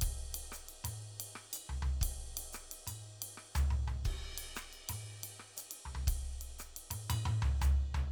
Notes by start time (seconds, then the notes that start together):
0.02 kick, ride
0.35 ride
0.52 cross-stick, hi-hat pedal
0.69 ride
0.85 mid tom, ride
1.20 ride
1.36 cross-stick
1.53 hi-hat pedal, ride bell
1.69 floor tom
1.83 floor tom
2.02 kick, ride
2.37 ride
2.53 cross-stick, hi-hat pedal
2.72 ride
2.87 mid tom, ride bell
3.22 ride
3.38 cross-stick
3.55 floor tom, hi-hat pedal
3.71 mid tom
3.88 floor tom
4.05 kick, ride
4.38 ride
4.56 cross-stick, hi-hat pedal
4.73 ride
4.89 mid tom, ride
5.24 ride
5.40 cross-stick
5.57 hi-hat pedal, ride
5.71 ride
5.86 kick, floor tom
5.95 floor tom
6.08 kick, ride
6.42 ride
6.59 cross-stick, hi-hat pedal
6.77 ride
6.91 mid tom, ride
7.10 mid tom, ride bell
7.26 mid tom
7.42 floor tom
7.62 floor tom, hi-hat pedal
7.95 floor tom